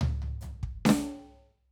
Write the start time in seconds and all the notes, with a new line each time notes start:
0.01 closed hi-hat, floor tom, high tom
0.22 floor tom, high tom
0.41 floor tom, hi-hat pedal, high tom
0.63 kick
0.85 snare
0.89 snare